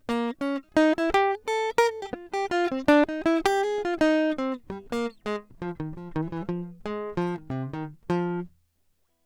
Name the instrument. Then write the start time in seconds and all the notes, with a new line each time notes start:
acoustic guitar
0.10 A#3
0.42 C#4
0.78 D#4
0.99 E4
1.16 G4
1.49 A4
1.79 A#4
1.89 A4
2.04 G4
2.35 G4
2.53 F4
2.90 D4
3.10 D#4
3.27 E4
3.47 G4
3.64 G#4
3.87 F4
4.03 D#4
4.40 C4
4.94 A#3
5.27 G#3
5.63 F3
5.81 D#3
6.00 F3
6.17 E3
6.34 E3
6.50 F3
6.87 G#3
7.19 F3
7.36 D#3
7.51 C3
7.75 D#3
8.11 F3